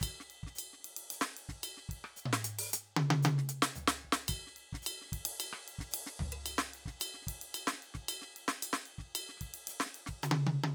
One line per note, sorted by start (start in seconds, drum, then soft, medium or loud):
0.01 kick medium
0.01 hi-hat pedal medium
0.01 ride bell loud
0.08 kick soft
0.12 kick soft
0.20 snare soft
0.30 ride soft
0.43 kick soft
0.43 snare soft
0.55 hi-hat pedal medium
0.55 ride bell medium
0.73 snare soft
0.80 snare soft
0.84 snare soft
0.84 ride medium
0.97 ride medium
1.10 hi-hat pedal medium
1.10 ride medium
1.21 snare loud
1.37 ride medium
1.49 kick soft
1.49 snare soft
1.54 kick soft
1.63 hi-hat pedal medium
1.63 ride bell loud
1.77 snare soft
1.89 kick soft
1.89 ride medium
2.04 cross-stick medium
2.16 hi-hat pedal medium
2.26 mid tom medium
2.33 snare loud
2.45 closed hi-hat loud
2.59 closed hi-hat loud
2.69 hi-hat pedal medium
2.73 closed hi-hat loud
2.97 high tom loud
3.01 cross-stick soft
3.10 high tom loud
3.23 hi-hat pedal medium
3.23 high tom loud
3.38 snare soft
3.49 closed hi-hat medium
3.62 snare loud
3.75 floor tom medium
3.75 hi-hat pedal medium
3.88 snare loud
4.05 kick soft
4.12 snare loud
4.28 kick soft
4.28 hi-hat pedal medium
4.28 ride bell loud
4.41 kick soft
4.47 snare soft
4.56 ride soft
4.73 kick soft
4.73 snare medium
4.78 kick soft
4.82 hi-hat pedal medium
4.86 ride bell loud
5.02 snare soft
5.06 snare soft
5.09 snare soft
5.11 kick soft
5.11 snare soft
5.11 ride medium
5.19 kick soft
5.25 ride loud
5.40 hi-hat pedal medium
5.40 ride bell loud
5.53 cross-stick medium
5.68 ride medium
5.79 kick soft
5.79 snare medium
5.91 hi-hat pedal medium
5.91 ride loud
6.06 snare medium
6.19 kick soft
6.19 floor tom medium
6.32 percussion loud
6.46 hi-hat pedal medium
6.46 ride bell loud
6.58 snare loud
6.74 ride soft
6.86 kick soft
6.86 snare soft
6.91 kick soft
7.00 hi-hat pedal medium
7.00 ride bell loud
7.14 snare soft
7.22 snare soft
7.27 kick soft
7.27 ride medium
7.42 ride medium
7.54 hi-hat pedal medium
7.54 ride bell loud
7.67 snare loud
7.73 snare soft
7.82 ride soft
7.94 kick soft
7.94 snare soft
8.09 hi-hat pedal medium
8.09 ride bell loud
8.22 snare soft
8.36 ride medium
8.48 snare loud
8.62 hi-hat pedal medium
8.62 ride bell loud
8.73 snare medium
8.86 ride soft
8.98 kick soft
8.98 snare soft
9.15 hi-hat pedal medium
9.15 ride bell loud
9.29 snare soft
9.37 kick soft
9.37 cross-stick soft
9.37 ride medium
9.48 snare soft
9.51 snare soft
9.51 ride medium
9.67 hi-hat pedal medium
9.67 ride medium
9.80 snare medium
9.86 snare soft
9.95 ride medium
10.06 kick soft
10.06 snare medium
10.23 hi-hat pedal medium
10.23 high tom medium
10.31 high tom loud
10.47 high tom loud
10.64 high tom loud